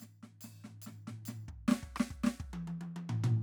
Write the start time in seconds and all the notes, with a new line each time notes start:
0.01 snare, floor tom, percussion
0.23 snare, floor tom
0.41 snare, floor tom, percussion
0.65 snare, floor tom
0.82 percussion
0.87 snare, floor tom
1.08 snare, floor tom
1.26 snare, floor tom, percussion
1.49 kick
1.69 snare
1.72 snare
1.83 kick
1.97 cross-stick, snare
2.11 kick
2.24 snare
2.27 snare
2.40 kick
2.54 high tom
2.68 high tom
2.81 high tom
2.97 high tom
3.10 floor tom
3.24 floor tom